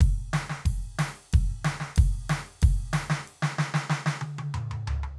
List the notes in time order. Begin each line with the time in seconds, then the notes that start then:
0.00 kick, ride
0.33 snare, ride
0.50 snare
0.65 kick, ride
0.99 snare, ride
1.33 kick, ride
1.65 snare, ride
1.80 snare
1.96 kick, ride
2.29 snare, ride
2.62 kick, ride
2.93 snare, ride
3.10 snare
3.28 ride
3.42 snare
3.58 snare
3.74 snare
3.90 snare
4.06 snare
4.21 high tom
4.38 high tom
4.54 mid tom
4.71 mid tom
4.87 floor tom
5.03 floor tom